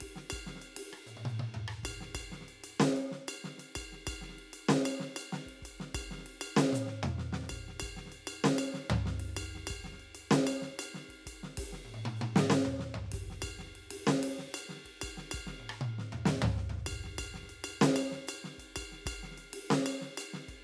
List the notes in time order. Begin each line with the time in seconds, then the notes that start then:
0.01 kick, ride
0.16 snare
0.30 kick, ride bell
0.39 kick
0.47 snare
0.56 snare
0.62 ride bell
0.77 ride
0.93 cross-stick
1.07 hi-hat pedal, high tom
1.17 high tom
1.26 hi-hat pedal, open hi-hat, high tom
1.40 high tom
1.54 mid tom
1.68 cross-stick
1.84 kick, ride bell
2.01 snare
2.15 kick, ride bell
2.21 kick
2.32 snare
2.41 snare
2.49 ride bell
2.64 ride bell
2.80 snare
2.84 hi-hat pedal
2.97 ride bell
3.12 snare
3.28 hi-hat pedal, ride bell
3.45 snare
3.58 snare, ride bell
3.76 kick, hi-hat pedal, ride bell
3.93 snare
4.07 kick, ride bell
4.16 kick
4.22 snare
4.29 snare
4.36 snare, ride
4.54 ride bell
4.69 snare
4.86 ride bell
5.00 snare
5.17 hi-hat pedal, ride bell
5.33 snare
5.47 kick, ride
5.62 kick, hi-hat pedal, ride bell
5.80 snare
5.95 kick, ride bell
6.01 kick
6.11 snare
6.18 snare
6.26 ride
6.42 ride bell
6.57 snare
6.73 hi-hat pedal, high tom
6.87 snare
7.03 mid tom
7.19 snare
7.33 snare
7.50 kick, ride bell
7.58 kick
7.60 kick
7.69 snare
7.80 kick, ride bell
7.88 kick
7.97 snare
8.06 snare
8.12 ride bell
8.28 ride bell
8.44 snare
8.57 hi-hat pedal, ride bell
8.74 snare
8.90 floor tom
9.06 snare
9.20 ride
9.30 cross-stick
9.37 kick, ride bell
9.56 snare
9.67 kick, ride bell
9.85 snare
9.93 snare
10.00 ride bell
10.15 ride bell
10.31 snare
10.47 ride bell
10.62 snare
10.79 hi-hat pedal, ride bell
10.95 snare
11.09 kick, ride
11.27 kick, ride bell
11.44 snare
11.58 kick, hi-hat pedal, ride
11.65 kick
11.73 snare
11.85 high tom
11.94 high tom
12.06 high tom
12.17 hi-hat pedal
12.22 high tom
12.36 snare
12.50 snare, hi-hat pedal
12.65 mid tom
12.80 snare
12.95 floor tom
13.04 snare
13.12 kick, hi-hat pedal, ride
13.23 kick
13.25 kick
13.30 snare
13.42 kick, ride bell
13.59 snare
13.65 snare
13.76 ride
13.91 ride
14.07 snare
14.23 ride
14.39 snare
14.55 hi-hat pedal, ride bell
14.69 snare
14.77 snare
14.85 kick, ride
15.02 kick, ride bell
15.18 snare
15.32 kick, ride bell
15.40 kick
15.47 snare
15.60 high tom
15.70 cross-stick
15.81 high tom
15.99 snare
16.13 mid tom
16.26 snare
16.36 hi-hat pedal
16.42 floor tom
16.57 snare
16.70 snare, mid tom
16.77 snare
16.87 kick, ride bell
16.93 hi-hat pedal
16.98 kick
17.04 snare
17.19 kick, ride bell
17.24 kick
17.34 snare
17.43 snare
17.50 ride bell
17.64 ride bell
17.82 snare, hi-hat pedal
17.96 ride bell
18.12 snare
18.28 hi-hat pedal, ride bell
18.45 snare
18.58 kick, ride bell
18.76 kick, ride bell
18.82 kick
18.92 snare
19.06 kick, ride bell
19.13 kick
19.23 snare
19.31 snare
19.38 snare, ride bell
19.44 snare
19.54 ride
19.71 snare
19.86 ride bell
20.02 snare
20.18 hi-hat pedal, ride bell
20.34 snare
20.49 kick, snare, ride bell